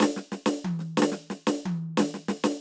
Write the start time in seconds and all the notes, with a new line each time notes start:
0.00 snare
0.02 snare
0.16 snare
0.32 snare
0.46 snare
0.65 high tom
0.79 snare
0.97 snare
1.02 snare
1.12 snare
1.30 snare
1.47 snare
1.65 high tom
1.97 snare
1.99 snare
2.14 snare
2.28 snare
2.44 snare